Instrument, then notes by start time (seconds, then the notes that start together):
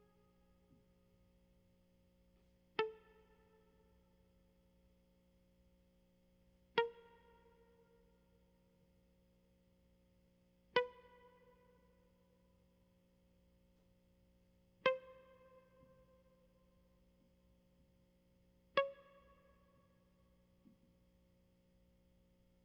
electric guitar
2.80 A4
6.79 A#4
10.77 B4
14.87 C5
18.78 C#5